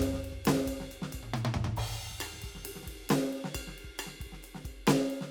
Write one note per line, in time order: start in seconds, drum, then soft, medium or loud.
0.01 kick soft
0.01 hi-hat pedal medium
0.01 ride bell medium
0.07 kick soft
0.14 snare soft
0.21 snare soft
0.21 ride medium
0.33 kick soft
0.45 snare loud
0.45 hi-hat pedal medium
0.45 ride loud
0.56 snare soft
0.67 kick soft
0.67 ride bell medium
0.74 kick soft
0.81 snare soft
0.91 hi-hat pedal soft
0.91 ride bell medium
1.02 snare medium
1.13 kick soft
1.13 ride bell medium
1.21 kick soft
1.21 high tom medium
1.34 hi-hat pedal medium
1.34 high tom loud
1.45 high tom loud
1.55 kick soft
1.55 mid tom loud
1.65 mid tom loud
1.77 kick soft
1.77 hi-hat pedal soft
1.77 crash loud
2.12 kick soft
2.17 kick soft
2.21 cross-stick medium
2.21 hi-hat pedal medium
2.21 ride bell loud
2.33 snare soft
2.42 kick soft
2.42 ride medium
2.50 kick soft
2.55 snare soft
2.65 hi-hat pedal soft
2.65 ride loud
2.76 snare soft
2.84 kick soft
2.84 snare soft
2.88 ride medium
2.93 kick soft
3.10 snare loud
3.10 hi-hat pedal medium
3.10 ride loud
3.33 ride soft
3.45 snare medium
3.55 kick soft
3.55 hi-hat pedal soft
3.55 ride bell loud
3.62 kick soft
3.68 snare soft
3.79 ride medium
3.85 kick soft
3.90 kick soft
3.99 cross-stick medium
3.99 hi-hat pedal medium
3.99 ride bell loud
4.07 snare soft
4.21 kick soft
4.21 ride medium
4.27 kick soft
4.33 snare soft
4.43 hi-hat pedal soft
4.43 ride medium
4.55 snare soft
4.65 kick soft
4.65 ride bell medium
4.87 snare loud
4.87 hi-hat pedal medium
4.87 ride bell loud
5.11 ride medium
5.21 snare medium